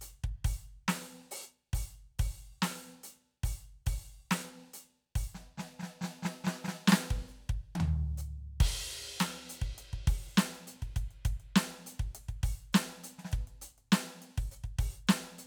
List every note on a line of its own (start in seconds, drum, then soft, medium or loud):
0.01 open hi-hat loud
0.24 kick medium
0.44 open hi-hat loud
0.44 kick medium
0.44 ride soft
0.88 open hi-hat loud
0.88 snare loud
0.93 cross-stick soft
1.31 open hi-hat loud
1.73 open hi-hat loud
1.73 kick medium
2.19 open hi-hat loud
2.19 kick medium
2.62 open hi-hat loud
2.62 snare loud
3.03 open hi-hat loud
3.43 open hi-hat loud
3.43 kick medium
3.86 open hi-hat loud
3.86 kick medium
4.31 open hi-hat loud
4.31 snare loud
4.73 open hi-hat loud
5.15 open hi-hat loud
5.15 kick medium
5.34 snare soft
5.57 snare soft
5.57 snare medium
5.79 snare soft
5.82 snare medium
6.01 snare medium
6.03 snare medium
6.22 snare soft
6.25 snare medium
6.44 snare medium
6.47 snare medium
6.64 snare medium
6.68 snare medium
6.87 snare loud
6.92 snare loud
7.10 kick medium
7.28 hi-hat pedal soft
7.49 kick medium
7.75 high tom loud
7.80 floor tom loud
8.17 hi-hat pedal medium
8.60 kick medium
8.60 crash loud
8.60 ride loud
8.93 closed hi-hat soft
9.05 closed hi-hat soft
9.20 snare loud
9.20 closed hi-hat loud
9.35 closed hi-hat soft
9.49 closed hi-hat loud
9.61 kick medium
9.61 closed hi-hat soft
9.78 closed hi-hat medium
9.93 kick soft
9.93 closed hi-hat soft
10.07 open hi-hat medium
10.07 kick medium
10.37 snare loud
10.37 closed hi-hat medium
10.37 hi-hat pedal medium
10.42 cross-stick soft
10.54 closed hi-hat soft
10.67 closed hi-hat medium
10.82 kick soft
10.82 closed hi-hat soft
10.96 kick medium
10.96 closed hi-hat medium
11.11 closed hi-hat soft
11.25 kick medium
11.25 closed hi-hat medium
11.40 closed hi-hat soft
11.56 snare loud
11.56 closed hi-hat medium
11.71 closed hi-hat soft
11.86 closed hi-hat medium
11.99 kick medium
11.99 closed hi-hat soft
12.15 closed hi-hat medium
12.28 kick soft
12.28 closed hi-hat soft
12.43 open hi-hat medium
12.43 kick medium
12.73 snare loud
12.73 closed hi-hat medium
12.73 hi-hat pedal soft
12.89 closed hi-hat soft
13.04 closed hi-hat loud
13.18 snare soft
13.18 closed hi-hat soft
13.24 snare soft
13.32 kick medium
13.32 closed hi-hat medium
13.47 closed hi-hat soft
13.61 closed hi-hat loud
13.78 closed hi-hat soft
13.92 snare loud
13.92 closed hi-hat medium
13.97 snare soft
14.08 closed hi-hat soft
14.22 closed hi-hat medium
14.37 kick medium
14.37 open hi-hat medium
14.51 hi-hat pedal medium
14.64 kick soft
14.64 closed hi-hat soft
14.78 open hi-hat medium
14.78 kick medium
15.07 snare loud
15.07 closed hi-hat medium
15.07 hi-hat pedal soft
15.24 closed hi-hat soft
15.38 closed hi-hat medium